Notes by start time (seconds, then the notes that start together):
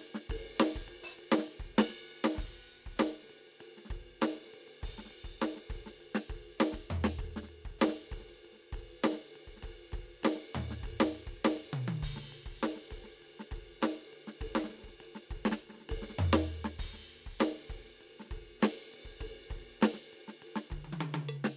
0.01 ride
0.14 snare
0.29 kick, ride
0.36 kick
0.41 kick
0.56 snare, hi-hat pedal, ride
0.75 kick
0.88 ride
1.03 open hi-hat
1.19 ride
1.32 snare
1.38 snare
1.48 ride
1.59 kick
1.75 snare, hi-hat pedal, ride bell
1.89 snare
2.06 hi-hat pedal
2.10 ride
2.24 snare
2.35 kick, snare, hi-hat pedal
2.39 crash
2.45 kick
2.49 kick
2.86 kick
2.96 snare, hi-hat pedal, ride
3.22 snare
3.29 ride
3.46 snare
3.60 hi-hat pedal, ride
3.77 snare
3.85 snare
3.90 kick, ride
3.98 kick
4.21 snare, hi-hat pedal, ride
4.36 snare
4.45 snare
4.54 ride
4.68 ride
4.82 kick, hi-hat pedal, ride
4.89 kick
4.98 snare
5.05 snare
5.11 ride
5.24 kick
5.41 snare, hi-hat pedal, ride
5.56 snare
5.70 kick, ride
5.75 kick
5.86 snare
5.98 hi-hat pedal, ride
6.15 snare
6.29 kick, ride
6.36 kick
6.58 snare, hi-hat pedal, ride
6.72 kick, snare
6.88 floor tom, hi-hat pedal
7.04 snare
7.16 kick, hi-hat pedal
7.20 ride
7.26 kick
7.36 snare
7.43 snare
7.49 ride
7.65 kick
7.79 snare, hi-hat pedal, ride
7.88 snare
8.11 kick, ride
8.18 kick, snare
8.28 snare
8.35 snare
8.41 hi-hat pedal, ride
8.52 snare
8.54 snare
8.72 kick, ride
8.79 kick
9.02 snare, hi-hat pedal, ride
9.12 snare
9.35 ride
9.47 kick
9.56 snare
9.61 kick, snare, hi-hat pedal, ride
9.65 snare
9.74 kick
9.92 kick, ride
10.05 kick
10.22 snare, hi-hat pedal, ride
10.35 snare
10.55 floor tom
10.71 snare
10.81 kick, hi-hat pedal
10.86 kick, ride
11.00 snare
11.15 ride
11.27 kick
11.44 snare, hi-hat pedal, ride
11.55 snare
11.73 mid tom
11.88 high tom
11.96 hi-hat pedal
12.02 kick, crash
12.08 kick
12.16 snare
12.23 snare
12.29 snare, ride
12.46 kick
12.63 snare, hi-hat pedal, ride
12.76 snare
12.91 kick, ride
13.04 snare
13.22 hi-hat pedal, ride
13.39 snare
13.51 kick, ride
13.58 kick
13.80 snare, hi-hat pedal, ride
14.13 ride
14.27 snare
14.38 kick, hi-hat pedal, ride
14.47 kick
14.50 kick
14.55 snare
14.60 cross-stick
14.64 snare
14.69 snare, ride
14.73 snare
14.77 snare
14.81 kick, snare
14.87 snare
15.00 hi-hat pedal, ride
15.15 snare
15.30 kick, ride
15.37 kick
15.45 snare
15.51 snare
15.58 hi-hat pedal, ride
15.67 snare, ride
15.73 snare
15.76 snare
15.80 snare
15.86 snare, ride
15.91 kick
15.99 kick, snare
16.04 kick
16.09 snare
16.18 floor tom, hi-hat pedal
16.33 snare
16.48 ride
16.64 snare
16.77 kick, hi-hat pedal, crash
16.91 kick, snare
16.98 snare
17.00 snare
17.26 kick
17.39 snare, hi-hat pedal, ride
17.69 kick, ride
17.84 snare
18.00 hi-hat pedal, ride
18.20 snare
18.25 snare
18.31 kick, ride
18.37 kick
18.60 snare, hi-hat pedal, ride
18.94 ride
19.05 kick, snare
19.20 kick, hi-hat pedal, ride
19.50 kick, ride
19.61 kick
19.80 snare, hi-hat pedal, ride
19.93 snare
20.13 ride
20.28 snare
20.42 hi-hat pedal, ride
20.56 snare
20.70 kick, high tom
20.78 kick
20.84 high tom
20.93 high tom
20.99 hi-hat pedal, high tom
21.14 high tom
21.29 percussion
21.44 snare